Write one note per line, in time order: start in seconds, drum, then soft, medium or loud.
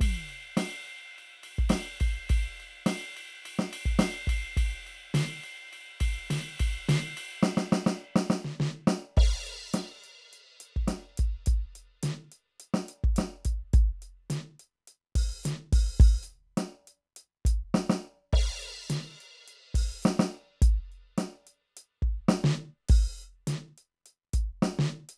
0.01 kick medium
0.01 ride loud
0.29 ride soft
0.57 snare loud
0.57 ride loud
0.87 ride soft
1.18 ride soft
1.44 ride medium
1.59 kick medium
1.70 snare loud
1.70 ride loud
2.00 kick medium
2.00 ride medium
2.30 kick medium
2.30 ride loud
2.60 ride medium
2.86 snare loud
2.86 ride loud
3.17 ride medium
3.46 ride loud
3.59 snare medium
3.73 ride loud
3.86 kick medium
3.99 snare loud
3.99 ride loud
4.28 kick medium
4.28 ride loud
4.57 kick medium
4.57 ride loud
4.87 ride medium
5.15 snare loud
5.15 ride loud
5.44 ride medium
5.73 ride medium
6.01 kick medium
6.01 ride loud
6.31 snare medium
6.31 ride loud
6.60 kick medium
6.60 ride loud
6.89 snare loud
6.89 ride loud
7.17 ride loud
7.43 snare loud
7.58 snare loud
7.73 snare loud
7.87 snare loud
8.16 snare loud
8.30 snare loud
8.45 snare medium
8.60 snare loud
8.88 snare loud
9.17 kick medium
9.17 crash loud
9.47 closed hi-hat medium
9.74 snare medium
9.74 closed hi-hat loud
10.04 closed hi-hat medium
10.33 closed hi-hat medium
10.60 closed hi-hat medium
10.77 kick medium
10.88 snare medium
10.88 closed hi-hat loud
11.18 kick medium
11.18 closed hi-hat loud
11.46 kick medium
11.46 closed hi-hat loud
11.76 closed hi-hat medium
12.03 snare medium
12.03 closed hi-hat loud
12.32 closed hi-hat medium
12.60 closed hi-hat medium
12.74 snare medium
12.89 closed hi-hat medium
13.04 kick medium
13.16 snare medium
13.16 closed hi-hat loud
13.45 kick medium
13.45 closed hi-hat loud
13.74 kick loud
13.74 closed hi-hat medium
14.02 closed hi-hat medium
14.30 closed hi-hat loud
14.30 snare medium
14.60 closed hi-hat medium
14.88 closed hi-hat medium
15.16 kick medium
15.16 open hi-hat loud
15.24 kick soft
15.44 snare medium
15.44 closed hi-hat loud
15.44 hi-hat pedal loud
15.73 kick medium
15.73 open hi-hat loud
16.00 kick loud
16.00 open hi-hat loud
16.23 hi-hat pedal loud
16.58 snare medium
16.58 closed hi-hat loud
16.88 closed hi-hat medium
17.17 closed hi-hat medium
17.45 kick medium
17.45 closed hi-hat loud
17.75 snare loud
17.90 snare loud
18.33 kick medium
18.33 crash loud
18.61 closed hi-hat soft
18.90 closed hi-hat loud
18.90 snare medium
19.21 closed hi-hat soft
19.48 closed hi-hat medium
19.75 kick medium
19.75 open hi-hat loud
19.82 kick soft
20.03 snare loud
20.03 hi-hat pedal loud
20.20 snare loud
20.62 kick medium
20.62 closed hi-hat loud
20.92 closed hi-hat soft
21.18 snare medium
21.18 closed hi-hat loud
21.47 closed hi-hat medium
21.77 closed hi-hat medium
22.03 kick medium
22.29 snare loud
22.44 snare loud
22.89 kick loud
22.89 open hi-hat loud
23.22 open hi-hat soft
23.48 snare medium
23.48 closed hi-hat loud
23.78 closed hi-hat medium
24.06 closed hi-hat medium
24.34 kick medium
24.34 closed hi-hat loud
24.63 snare loud
24.79 snare loud
25.09 closed hi-hat medium